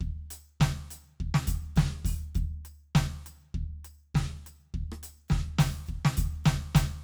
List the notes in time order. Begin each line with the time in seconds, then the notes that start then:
0.01 kick, snare, crash, ride, percussion
0.31 percussion
0.60 kick, snare
0.91 percussion
1.20 kick, crash
1.34 snare
1.47 kick, percussion
1.76 kick, snare, percussion
2.05 kick, percussion
2.35 kick, percussion
2.65 percussion
2.95 kick, snare
3.26 percussion
3.55 kick
3.85 percussion
4.15 kick, snare, percussion
4.47 percussion
4.74 kick, crash
4.92 cross-stick
5.03 percussion
5.08 kick
5.29 kick, snare, percussion
5.59 kick, snare, percussion
5.86 kick, percussion
6.05 snare
6.17 kick, percussion
6.45 kick, snare, percussion
6.75 kick, snare, percussion